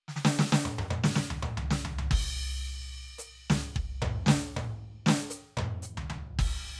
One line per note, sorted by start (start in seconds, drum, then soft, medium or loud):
0.08 snare medium
0.16 snare medium
0.25 snare loud
0.39 snare loud
0.52 snare loud
0.65 high tom loud
0.78 mid tom loud
0.90 high tom loud
1.04 snare loud
1.16 snare loud
1.30 floor tom loud
1.43 high tom loud
1.57 floor tom loud
1.71 snare loud
1.85 floor tom loud
1.99 floor tom loud
2.11 kick loud
2.11 crash loud
3.18 hi-hat pedal loud
3.50 snare loud
3.50 floor tom loud
3.73 kick loud
3.73 hi-hat pedal soft
4.02 mid tom loud
4.02 high tom loud
4.26 snare loud
4.28 snare loud
4.56 high tom loud
5.06 snare loud
5.08 snare loud
5.30 hi-hat pedal loud
5.57 mid tom loud
5.57 high tom loud
5.82 hi-hat pedal medium
5.97 floor tom loud
6.10 floor tom loud
6.39 kick loud
6.39 crash medium
6.63 crash soft